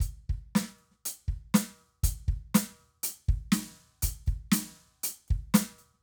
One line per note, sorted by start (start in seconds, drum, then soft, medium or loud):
0.02 closed hi-hat medium
0.02 kick soft
0.02 snare soft
0.30 kick soft
0.30 closed hi-hat soft
0.56 closed hi-hat medium
0.56 snare loud
0.61 snare soft
0.79 closed hi-hat soft
0.91 snare soft
1.06 closed hi-hat loud
1.28 kick soft
1.28 closed hi-hat soft
1.35 kick soft
1.54 closed hi-hat loud
1.54 snare loud
1.60 snare soft
2.04 closed hi-hat loud
2.04 kick medium
2.28 kick medium
2.28 closed hi-hat soft
2.55 closed hi-hat loud
2.55 snare loud
3.04 closed hi-hat loud
3.26 kick medium
3.26 closed hi-hat soft
3.52 closed hi-hat medium
3.52 snare loud
4.03 closed hi-hat loud
4.03 kick soft
4.27 closed hi-hat soft
4.27 kick medium
4.52 closed hi-hat loud
4.52 snare loud
4.77 closed hi-hat soft
5.04 closed hi-hat loud
5.28 kick medium
5.28 closed hi-hat soft
5.54 closed hi-hat loud
5.54 snare loud
5.61 snare soft
5.78 closed hi-hat soft
5.94 snare soft